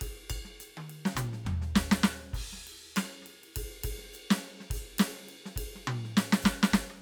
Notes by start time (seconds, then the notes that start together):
0.01 kick, hi-hat pedal, ride
0.07 kick
0.10 kick
0.21 snare
0.30 kick, ride bell
0.37 kick
0.40 kick
0.45 snare
0.60 hi-hat pedal, ride
0.77 high tom
0.90 ride
1.06 snare
1.15 kick, hi-hat pedal, mid tom
1.33 snare
1.45 kick, floor tom
1.50 kick
1.62 snare
1.75 kick, snare
1.92 snare
2.04 snare
2.34 kick, crash
2.40 kick
2.44 kick
2.53 snare
2.57 cross-stick
2.67 ride
2.96 snare, hi-hat pedal, ride bell
3.04 snare
3.22 cross-stick
3.26 cross-stick, ride
3.44 ride
3.54 kick, hi-hat pedal, ride
3.63 kick
3.84 kick, ride
3.91 kick
3.95 kick, snare
4.04 snare
4.13 hi-hat pedal, ride
4.31 snare
4.37 snare, hi-hat pedal
4.43 ride
4.60 snare
4.71 kick, hi-hat pedal, ride
4.78 kick
4.82 kick
4.99 snare, ride
5.06 cross-stick
5.29 ride
5.46 snare
5.56 kick, ride
5.63 kick
5.66 kick
5.76 snare
5.87 mid tom
6.05 snare
6.17 snare
6.33 snare
6.42 kick, snare, hi-hat pedal
6.63 snare
6.73 kick, snare
6.90 cross-stick